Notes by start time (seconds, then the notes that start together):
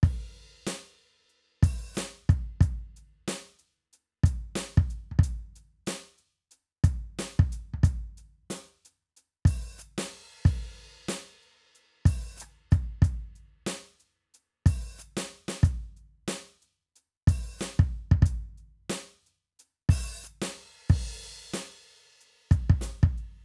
0.03 kick, crash
0.34 closed hi-hat
0.67 snare, closed hi-hat
0.98 closed hi-hat
1.29 closed hi-hat
1.63 kick, open hi-hat
1.94 snare, closed hi-hat, hi-hat pedal
2.29 kick, closed hi-hat
2.61 kick, closed hi-hat
2.96 closed hi-hat
3.28 snare, closed hi-hat
3.59 closed hi-hat
3.93 closed hi-hat
4.24 kick, closed hi-hat
4.56 snare, closed hi-hat
4.77 kick
4.90 closed hi-hat
5.11 kick
5.19 kick
5.23 closed hi-hat
5.56 closed hi-hat
5.87 snare, closed hi-hat
6.18 closed hi-hat
6.51 closed hi-hat
6.84 kick, closed hi-hat
7.19 snare, closed hi-hat
7.39 kick
7.52 closed hi-hat
7.74 kick
7.83 kick, closed hi-hat
8.17 closed hi-hat
8.50 snare, closed hi-hat
8.85 closed hi-hat
9.17 closed hi-hat
9.45 kick, open hi-hat
9.78 hi-hat pedal
9.98 snare, crash
10.45 kick, crash
11.09 snare, closed hi-hat
11.42 closed hi-hat
11.75 closed hi-hat
12.06 kick, open hi-hat
12.37 closed hi-hat, hi-hat pedal
12.42 cross-stick
12.71 closed hi-hat, kick
13.02 kick, closed hi-hat
13.35 closed hi-hat
13.67 snare, closed hi-hat
14.00 closed hi-hat
14.34 closed hi-hat
14.66 kick, open hi-hat
14.99 hi-hat pedal
15.17 snare, closed hi-hat
15.48 snare
15.63 kick, closed hi-hat
15.96 closed hi-hat
16.28 snare, closed hi-hat
16.62 closed hi-hat
16.96 closed hi-hat
17.27 kick, open hi-hat
17.59 snare, closed hi-hat, hi-hat pedal
17.79 kick
18.11 kick
18.22 kick, closed hi-hat
18.57 closed hi-hat
18.90 snare, closed hi-hat
19.26 closed hi-hat
19.59 closed hi-hat
19.89 open hi-hat, kick
20.24 hi-hat pedal
20.42 snare, crash
20.89 kick, crash
21.54 snare, closed hi-hat
22.21 closed hi-hat
22.51 kick, closed hi-hat
22.70 kick
22.81 snare, closed hi-hat
23.03 kick
23.17 closed hi-hat